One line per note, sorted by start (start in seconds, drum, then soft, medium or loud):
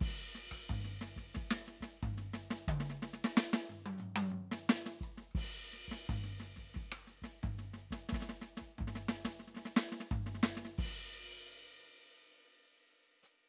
0.01 kick medium
0.01 crash medium
0.33 snare soft
0.33 hi-hat pedal soft
0.52 kick soft
0.52 cross-stick medium
0.70 kick soft
0.70 floor tom medium
0.85 snare soft
1.01 snare medium
1.01 hi-hat pedal soft
1.17 kick soft
1.17 snare soft
1.35 kick soft
1.35 snare soft
1.51 snare medium
1.66 snare soft
1.66 hi-hat pedal medium
1.81 kick soft
1.81 snare medium
2.03 kick soft
2.03 floor tom medium
2.18 snare soft
2.34 snare medium
2.34 hi-hat pedal medium
2.51 snare medium
2.68 kick soft
2.68 hi-hat pedal medium
2.68 mid tom medium
2.77 kick soft
2.77 snare medium
2.90 snare soft
3.03 snare medium
3.14 snare soft
3.14 hi-hat pedal soft
3.25 snare medium
3.37 snare loud
3.42 hi-hat pedal medium
3.54 snare loud
3.70 floor tom soft
3.70 hi-hat pedal medium
3.86 high tom medium
3.98 floor tom medium
3.98 hi-hat pedal medium
4.16 high tom loud
4.28 hi-hat pedal medium
4.32 floor tom soft
4.52 snare medium
4.69 snare loud
4.69 hi-hat pedal medium
4.86 snare medium
5.01 kick soft
5.01 floor tom medium
5.18 snare soft
5.31 kick medium
5.31 cross-stick soft
5.37 crash medium
5.73 snare soft
5.88 kick soft
5.88 snare medium
6.09 kick soft
6.09 floor tom medium
6.24 snare soft
6.40 snare soft
6.40 hi-hat pedal soft
6.56 kick soft
6.56 snare soft
6.74 kick soft
6.74 snare soft
6.92 cross-stick medium
7.07 snare soft
7.07 hi-hat pedal medium
7.22 kick soft
7.22 snare soft
7.43 kick soft
7.43 floor tom medium
7.59 snare soft
7.74 snare soft
7.74 hi-hat pedal soft
7.91 kick soft
7.91 snare medium
8.09 kick soft
8.09 snare medium
8.14 snare medium
8.20 snare soft
8.22 snare medium
8.29 snare medium
8.42 snare soft
8.42 hi-hat pedal soft
8.57 snare medium
8.62 kick soft
8.79 kick soft
8.79 floor tom medium
8.88 snare soft
8.96 snare medium
9.09 snare medium
9.13 hi-hat pedal soft
9.25 kick soft
9.25 snare medium
9.40 snare soft
9.48 snare soft
9.55 snare soft
9.57 snare medium
9.66 snare medium
9.77 snare loud
9.92 snare medium
10.01 snare soft
10.12 kick soft
10.12 floor tom medium
10.21 kick soft
10.27 snare soft
10.35 snare soft
10.43 snare loud
10.43 hi-hat pedal soft
10.57 snare soft
10.65 snare soft
10.78 kick medium
10.78 crash medium
13.23 hi-hat pedal medium